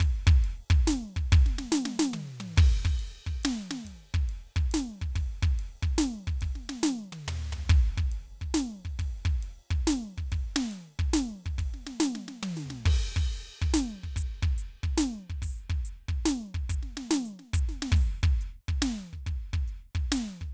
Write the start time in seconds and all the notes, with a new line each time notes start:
0.00 kick, ride
0.27 kick
0.44 ride
0.70 kick
0.87 snare, ride
1.16 kick
1.32 kick, ride
1.46 snare
1.58 snare
1.72 snare
1.85 snare
1.99 snare
2.13 mid tom
2.40 high tom
2.56 kick, crash
2.85 kick
2.99 ride
3.26 kick
3.44 snare, ride
3.71 snare
3.84 kick, ride
4.14 kick
4.29 ride
4.56 kick
4.71 snare, ride
5.01 kick
5.16 kick, ride
5.43 kick
5.59 ride
5.83 kick
5.98 snare, ride
6.27 kick
6.41 kick, ride
6.55 snare
6.69 snare
6.83 snare, hi-hat pedal
7.12 mid tom
7.28 floor tom
7.52 floor tom
7.69 kick, ride
7.98 kick
8.12 ride
8.41 kick
8.54 snare
8.59 ride
8.85 kick
8.99 kick, ride
9.25 kick
9.43 ride
9.71 kick
9.87 snare, ride
10.18 kick
10.32 kick, ride
10.56 snare
10.71 ride
10.99 kick
11.13 snare, ride
11.46 kick
11.58 kick, ride
11.74 snare
11.82 hi-hat pedal
11.87 snare
12.00 snare
12.06 hi-hat pedal
12.15 snare
12.28 snare
12.43 high tom
12.57 snare
12.66 kick
12.70 snare
12.86 kick, crash
13.16 kick
13.33 open hi-hat
13.62 kick
13.73 closed hi-hat, kick, snare
14.03 kick
14.16 closed hi-hat, kick
14.43 kick
14.58 closed hi-hat
14.83 kick
14.98 closed hi-hat, snare
15.30 kick
15.42 open hi-hat, kick
15.70 kick
15.85 closed hi-hat
16.08 kick
16.26 closed hi-hat, snare
16.54 kick
16.69 closed hi-hat, kick
16.83 snare
16.97 snare
17.11 snare, hi-hat pedal
17.25 open hi-hat, hi-hat pedal
17.39 snare
17.53 closed hi-hat, kick
17.69 snare
17.82 snare
17.92 kick
17.96 open hi-hat, snare
18.23 kick
18.41 closed hi-hat
18.68 kick
18.82 closed hi-hat, snare
19.13 kick
19.26 kick, closed hi-hat
19.53 kick
19.68 closed hi-hat
19.95 kick
20.12 closed hi-hat, snare
20.41 kick